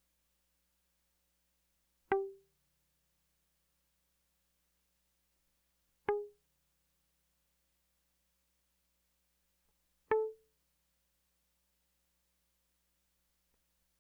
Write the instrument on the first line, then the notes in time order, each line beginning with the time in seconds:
electric guitar
2.12 G4
6.09 G#4
10.12 A4